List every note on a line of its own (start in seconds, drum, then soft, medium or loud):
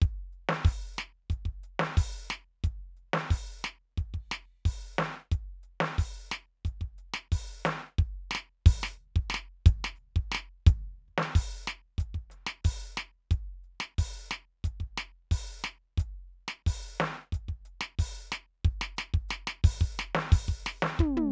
0.00 closed hi-hat medium
0.00 kick medium
0.32 closed hi-hat soft
0.49 snare loud
0.65 open hi-hat medium
0.65 kick loud
0.96 closed hi-hat soft
0.96 snare loud
0.96 hi-hat pedal soft
1.30 closed hi-hat medium
1.30 kick medium
1.45 kick medium
1.63 closed hi-hat soft
1.79 snare loud
1.97 open hi-hat loud
1.97 kick medium
2.29 closed hi-hat medium
2.29 snare loud
2.29 hi-hat pedal soft
2.64 closed hi-hat medium
2.64 kick medium
2.97 closed hi-hat soft
3.13 snare loud
3.30 open hi-hat loud
3.30 kick medium
3.62 closed hi-hat soft
3.62 snare loud
3.62 hi-hat pedal soft
3.97 kick medium
3.97 closed hi-hat soft
4.14 kick medium
4.14 crash soft
4.31 closed hi-hat medium
4.31 snare loud
4.65 open hi-hat medium
4.65 kick medium
4.95 closed hi-hat medium
4.95 snare loud
4.95 hi-hat pedal soft
5.31 closed hi-hat medium
5.31 kick medium
5.63 closed hi-hat soft
5.80 snare loud
5.98 open hi-hat loud
5.98 kick medium
6.31 closed hi-hat medium
6.31 snare loud
6.31 hi-hat pedal soft
6.65 closed hi-hat medium
6.65 kick medium
6.81 kick medium
6.98 closed hi-hat soft
7.13 snare loud
7.32 open hi-hat loud
7.32 kick medium
7.64 closed hi-hat loud
7.64 snare loud
7.64 hi-hat pedal soft
7.98 kick medium
8.31 snare loud
8.35 snare loud
8.66 open hi-hat loud
8.66 kick loud
8.83 snare loud
8.89 hi-hat pedal soft
9.16 kick medium
9.30 snare loud
9.34 snare loud
9.66 open hi-hat loud
9.66 kick loud
9.84 snare loud
9.95 hi-hat pedal soft
10.16 kick medium
10.32 snare loud
10.34 snare loud
10.66 closed hi-hat loud
10.66 kick loud
11.08 kick soft
11.18 snare loud
11.23 snare medium
11.35 open hi-hat loud
11.35 kick medium
11.65 closed hi-hat medium
11.65 snare loud
11.65 hi-hat pedal soft
11.98 closed hi-hat medium
11.98 kick medium
12.14 kick soft
12.30 closed hi-hat medium
12.30 snare soft
12.46 snare loud
12.64 open hi-hat loud
12.64 kick medium
12.95 snare loud
12.95 closed hi-hat soft
12.95 hi-hat pedal soft
13.31 closed hi-hat medium
13.31 kick medium
13.64 closed hi-hat soft
13.80 snare loud
13.98 open hi-hat loud
13.98 kick medium
14.30 snare loud
14.30 closed hi-hat soft
14.30 hi-hat pedal medium
14.64 closed hi-hat loud
14.64 kick medium
14.80 kick medium
14.97 snare loud
14.97 closed hi-hat soft
15.31 open hi-hat loud
15.31 kick medium
15.62 snare loud
15.62 hi-hat pedal soft
15.97 closed hi-hat loud
15.97 kick medium
16.32 closed hi-hat soft
16.48 snare loud
16.66 open hi-hat loud
16.66 kick medium
16.98 closed hi-hat medium
16.98 snare loud
16.98 hi-hat pedal soft
17.32 closed hi-hat medium
17.32 kick medium
17.48 kick soft
17.65 closed hi-hat medium
17.81 snare loud
17.99 open hi-hat loud
17.99 kick medium
18.29 snare loud
18.29 hi-hat pedal soft
18.33 closed hi-hat loud
18.64 kick medium
18.81 snare loud
18.96 snare loud
18.96 hi-hat pedal medium
19.14 kick medium
19.28 snare loud
19.28 hi-hat pedal medium
19.47 snare loud
19.64 open hi-hat loud
19.64 kick loud
19.81 kick medium
19.98 snare loud
19.98 hi-hat pedal soft
20.15 snare loud
20.32 open hi-hat loud
20.32 kick loud
20.48 kick medium
20.66 snare loud
20.82 snare loud
20.99 kick medium
20.99 floor tom loud
21.16 floor tom loud